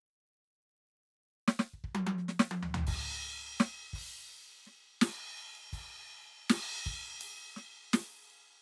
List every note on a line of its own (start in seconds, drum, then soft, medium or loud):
1.48 snare loud
1.59 snare medium
1.73 kick soft
1.84 kick soft
1.95 high tom loud
2.07 high tom loud
2.18 snare soft
2.39 snare loud
2.51 high tom loud
2.63 floor tom medium
2.74 floor tom loud
2.87 kick medium
2.87 ride loud
3.59 snare loud
3.59 hi-hat pedal medium
3.93 kick soft
3.93 crash medium
4.28 hi-hat pedal soft
4.65 snare soft
4.65 ride soft
5.01 snare loud
5.01 hi-hat pedal medium
5.01 ride loud
5.37 ride soft
5.55 ride soft
5.73 kick soft
5.73 hi-hat pedal medium
5.73 ride medium
6.15 ride soft
6.49 snare loud
6.49 hi-hat pedal medium
6.49 ride loud
6.86 kick soft
6.86 ride soft
7.20 hi-hat pedal medium
7.20 ride loud
7.56 snare soft
7.56 ride soft
7.93 snare loud
7.93 hi-hat pedal medium
7.93 ride loud
8.30 ride soft